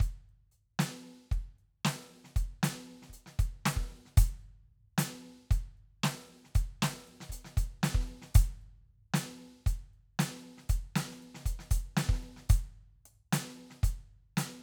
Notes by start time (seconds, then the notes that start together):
0.02 closed hi-hat, kick
0.29 closed hi-hat
0.52 closed hi-hat
0.79 closed hi-hat, snare
1.06 closed hi-hat
1.31 kick, closed hi-hat
1.58 closed hi-hat
1.85 closed hi-hat, snare
2.24 snare
2.36 closed hi-hat, kick
2.63 closed hi-hat, snare
3.02 snare
3.09 closed hi-hat, kick
3.26 snare
3.39 closed hi-hat, kick
3.65 closed hi-hat, snare
3.77 kick
3.89 snare
4.05 snare
4.17 closed hi-hat, kick
4.42 closed hi-hat
4.98 closed hi-hat, snare
5.51 closed hi-hat, kick
5.77 closed hi-hat
6.03 snare, closed hi-hat
6.44 snare
6.55 closed hi-hat, kick
6.82 closed hi-hat, snare
7.07 closed hi-hat
7.20 snare
7.29 closed hi-hat, kick
7.44 snare
7.57 closed hi-hat, kick
7.83 closed hi-hat, snare
7.94 kick
8.00 snare
8.07 closed hi-hat
8.22 snare
8.34 closed hi-hat, kick
8.61 closed hi-hat
9.14 closed hi-hat, snare
9.66 closed hi-hat, kick
9.93 closed hi-hat
10.19 closed hi-hat, snare
10.36 snare
10.58 snare
10.69 closed hi-hat, kick
10.96 closed hi-hat, snare
11.10 snare
11.22 closed hi-hat
11.34 snare
11.39 snare
11.46 closed hi-hat, kick
11.59 snare
11.71 closed hi-hat, kick
11.97 closed hi-hat, snare
12.09 kick
12.13 snare
12.22 snare, closed hi-hat
12.36 snare
12.49 closed hi-hat, kick
13.05 closed hi-hat
13.32 closed hi-hat, snare
13.48 snare
13.58 closed hi-hat
13.70 snare
13.83 closed hi-hat, kick
14.37 closed hi-hat, snare